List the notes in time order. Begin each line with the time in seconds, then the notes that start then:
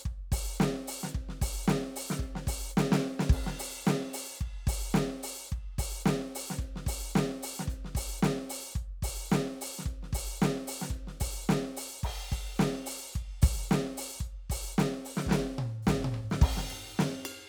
0.01 hi-hat pedal
0.06 kick
0.32 open hi-hat, kick
0.57 snare, hi-hat pedal
0.88 open hi-hat
1.04 snare
1.09 hi-hat pedal
1.15 kick, closed hi-hat
1.29 snare
1.42 open hi-hat, kick
1.65 snare, hi-hat pedal
1.96 open hi-hat
2.10 snare
2.16 kick, hi-hat pedal
2.23 closed hi-hat
2.36 snare
2.47 open hi-hat, kick
2.71 hi-hat pedal
2.77 snare
2.92 snare
3.20 snare, hi-hat pedal
3.30 kick, crash
3.47 snare
3.60 open hi-hat
3.86 snare, hi-hat pedal
4.14 open hi-hat
4.38 kick, hi-hat pedal
4.67 open hi-hat, kick
4.92 snare, hi-hat pedal
5.23 open hi-hat
5.49 kick, hi-hat pedal
5.79 open hi-hat, kick
6.02 hi-hat pedal
6.06 snare
6.35 open hi-hat
6.50 snare, hi-hat pedal
6.59 kick, closed hi-hat
6.76 snare
6.87 open hi-hat, kick
7.11 hi-hat pedal
7.16 snare
7.43 open hi-hat
7.60 snare, hi-hat pedal
7.68 closed hi-hat, kick
7.85 snare
7.95 open hi-hat, kick
8.19 hi-hat pedal
8.23 snare
8.50 open hi-hat
8.72 kick, hi-hat pedal
9.03 open hi-hat, kick
9.29 snare, hi-hat pedal
9.61 open hi-hat
9.79 snare, hi-hat pedal
9.86 kick
10.03 snare
10.13 open hi-hat, kick
10.38 hi-hat pedal
10.42 snare
10.68 open hi-hat
10.82 snare
10.87 kick, hi-hat pedal
11.07 snare
11.20 open hi-hat, kick
11.44 hi-hat pedal
11.49 snare
11.77 open hi-hat
11.99 hi-hat pedal
12.04 kick, crash
12.32 open hi-hat, kick
12.56 snare, hi-hat pedal
12.86 open hi-hat
13.10 hi-hat pedal, open hi-hat
13.16 kick
13.42 open hi-hat, kick
13.67 hi-hat pedal
13.71 snare
13.98 open hi-hat
14.19 kick, hi-hat pedal
14.50 open hi-hat, kick
14.72 hi-hat pedal
14.78 snare
15.05 open hi-hat
15.17 snare
15.22 hi-hat pedal
15.27 kick, snare
15.32 snare
15.59 high tom
15.83 hi-hat pedal
15.87 kick, snare
16.05 high tom
16.15 floor tom
16.30 snare, hi-hat pedal
16.42 kick, crash
16.57 snare
16.71 snare, ride, floor tom
16.90 hi-hat pedal
16.99 snare
17.26 ride bell